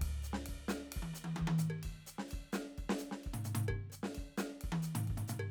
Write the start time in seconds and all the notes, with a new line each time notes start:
0.01 kick, ride
0.07 kick
0.22 hi-hat pedal, ride
0.33 snare
0.43 hi-hat pedal, ride
0.48 kick
0.68 snare, hi-hat pedal
0.90 hi-hat pedal, ride
0.96 kick
1.02 kick, high tom
1.04 kick
1.13 hi-hat pedal, high tom
1.24 high tom
1.35 hi-hat pedal, high tom
1.41 kick
1.47 high tom
1.58 hi-hat pedal, mid tom
1.70 percussion
1.78 percussion
1.83 kick, ride bell
2.06 hi-hat pedal, ride
2.18 snare
2.28 hi-hat pedal, ride bell
2.33 kick
2.52 snare, hi-hat pedal
2.77 kick, ride bell
2.89 snare
2.98 hi-hat pedal, ride
3.11 snare
3.23 kick, ride bell
3.33 mid tom
3.44 hi-hat pedal, mid tom
3.55 mid tom
3.68 kick, percussion
3.77 kick
3.90 hi-hat pedal, percussion
4.03 snare
4.13 hi-hat pedal, ride bell
4.17 kick
4.37 snare, hi-hat pedal
4.61 kick, ride
4.72 kick, high tom
4.82 hi-hat pedal, ride
4.95 mid tom
5.03 hi-hat pedal
5.07 kick, ride
5.17 mid tom
5.27 hi-hat pedal, mid tom
5.39 percussion